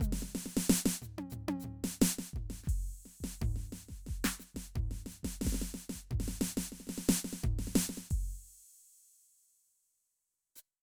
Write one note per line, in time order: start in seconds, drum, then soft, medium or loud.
0.01 kick soft
0.01 hi-hat pedal medium
0.01 mid tom medium
0.10 kick soft
0.10 snare medium
0.23 snare soft
0.35 snare medium
0.46 snare soft
0.46 hi-hat pedal soft
0.57 snare medium
0.70 snare loud
0.74 hi-hat pedal medium
0.86 snare loud
1.02 floor tom soft
1.02 hi-hat pedal medium
1.19 high tom medium
1.31 floor tom medium
1.31 hi-hat pedal medium
1.49 high tom loud
1.60 hi-hat pedal medium
1.65 floor tom soft
1.85 snare medium
2.02 snare loud
2.02 hi-hat pedal medium
2.19 snare medium
2.34 kick soft
2.34 floor tom medium
2.51 snare soft
2.64 kick medium
2.64 snare soft
2.70 crash medium
3.06 snare soft
3.21 kick soft
3.21 snare medium
3.42 kick soft
3.42 floor tom medium
3.56 snare soft
3.73 snare soft
3.73 hi-hat pedal soft
3.89 kick soft
3.89 snare soft
4.07 kick soft
4.07 snare soft
4.25 snare medium
4.40 snare soft
4.40 hi-hat pedal medium
4.55 kick soft
4.55 snare soft
4.76 kick soft
4.76 floor tom medium
4.92 snare soft
5.07 snare soft
5.07 hi-hat pedal soft
5.24 kick soft
5.24 snare medium
5.42 kick soft
5.42 snare medium
5.47 snare medium
5.53 snare soft
5.55 snare medium
5.62 snare medium
5.75 snare soft
5.75 hi-hat pedal soft
5.90 snare medium
5.95 kick soft
6.11 kick soft
6.11 floor tom medium
6.21 snare soft
6.28 snare medium
6.42 snare medium
6.46 hi-hat pedal soft
6.58 kick soft
6.58 snare medium
6.72 snare soft
6.80 snare soft
6.87 snare soft
6.90 snare medium
6.98 snare medium
7.09 snare loud
7.25 snare medium
7.33 snare soft
7.44 kick soft
7.44 floor tom medium
7.54 kick soft
7.59 snare soft
7.68 snare soft
7.75 snare loud
7.75 hi-hat pedal soft
7.90 snare soft
7.98 snare soft
8.11 kick medium
8.11 crash medium
10.56 hi-hat pedal medium